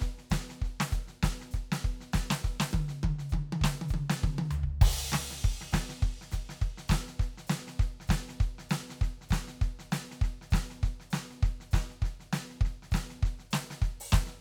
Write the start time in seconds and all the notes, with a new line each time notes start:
0.01 kick, snare
0.18 snare
0.30 kick, snare, hi-hat pedal
0.50 snare
0.62 kick, snare
0.80 snare
0.91 kick, snare, hi-hat pedal
1.08 snare
1.23 kick, snare
1.41 snare
1.51 kick, snare, hi-hat pedal
1.72 snare
1.84 kick, snare
2.01 snare
2.13 kick, snare, hi-hat pedal
2.31 snare
2.44 kick, snare
2.60 snare
2.71 kick, hi-hat pedal, high tom
2.89 snare
3.03 kick, high tom
3.19 snare
3.30 kick, hi-hat pedal
3.34 high tom
3.53 high tom
3.62 kick, snare
3.82 high tom
3.89 kick, hi-hat pedal
3.94 high tom
4.10 snare
4.24 kick, high tom
4.39 high tom
4.51 floor tom, hi-hat pedal
4.64 kick
4.82 kick, crash
5.12 snare, hi-hat pedal
5.31 snare
5.44 kick, snare
5.61 snare
5.72 kick, snare, hi-hat pedal
5.90 snare
6.02 kick, snare
6.21 snare
6.31 kick, snare, hi-hat pedal
6.49 snare
6.61 kick, snare
6.78 snare
6.88 kick, snare, hi-hat pedal
6.92 snare
7.08 snare
7.20 kick, snare
7.38 snare
7.47 snare, hi-hat pedal
7.68 snare
7.80 kick, snare
8.00 snare
8.08 kick, hi-hat pedal
8.29 snare
8.40 kick, snare
8.59 snare
8.70 snare, hi-hat pedal
8.90 snare
9.01 kick, snare
9.21 snare
9.29 kick, snare, hi-hat pedal
9.48 snare
9.62 kick, snare
9.79 snare
9.85 kick
9.92 snare, hi-hat pedal
10.11 snare
10.22 kick, snare
10.42 snare
10.51 kick, snare, hi-hat pedal
10.70 snare
10.83 kick, snare
11.00 snare
11.11 snare, hi-hat pedal
11.30 snare
11.43 kick, snare
11.61 snare
11.71 kick, snare, hi-hat pedal
11.90 snare
12.02 kick, snare
12.20 snare
12.33 snare, hi-hat pedal
12.50 snare
12.61 kick, snare
12.83 snare
12.92 kick, snare, hi-hat pedal
13.10 snare
13.23 kick, snare
13.39 snare
13.51 snare, hi-hat pedal
13.71 snare
13.82 kick, snare
14.00 open hi-hat
14.11 kick, snare, hi-hat pedal
14.27 snare